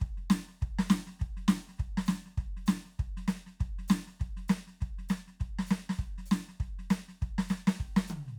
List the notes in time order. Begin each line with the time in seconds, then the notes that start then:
0.01 kick, snare
0.18 snare
0.31 snare, hi-hat pedal
0.49 snare
0.62 kick, snare
0.80 snare
0.90 snare, hi-hat pedal
1.08 snare
1.20 kick, snare
1.38 snare
1.49 snare, hi-hat pedal
1.69 snare
1.79 kick, snare
1.98 snare
2.07 snare, hi-hat pedal
2.26 snare
2.38 kick, snare
2.58 snare
2.67 kick, snare, hi-hat pedal
2.86 snare
3.00 kick, snare
3.18 snare
3.29 snare, hi-hat pedal
3.47 snare
3.61 kick, snare
3.79 snare
3.89 snare, hi-hat pedal
4.08 snare
4.21 kick, snare
4.38 snare
4.49 snare, hi-hat pedal
4.68 snare
4.82 kick, snare
4.99 snare
5.10 snare, hi-hat pedal
5.28 snare
5.41 kick, snare
5.60 snare
5.68 snare, hi-hat pedal
5.90 snare
6.00 kick, snare
6.19 snare
6.27 hi-hat pedal
6.32 snare
6.49 snare
6.61 kick, snare
6.80 snare
6.91 snare, hi-hat pedal
7.09 snare
7.22 kick, snare
7.39 snare
7.50 snare, hi-hat pedal
7.68 snare
7.81 kick, snare
7.97 snare
8.08 hi-hat pedal, high tom
8.29 snare